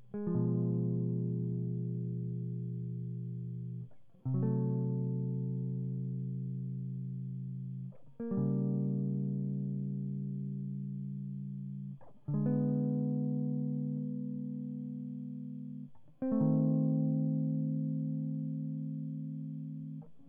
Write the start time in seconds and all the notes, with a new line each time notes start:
0.15 G#3
0.28 F3
0.36 B2
4.27 C3
4.36 F#3
4.43 A3
8.21 A#3
8.32 G3
8.39 C#3
12.29 D3
12.35 G#3
12.47 B3
16.23 C4
16.32 A3
16.42 D#3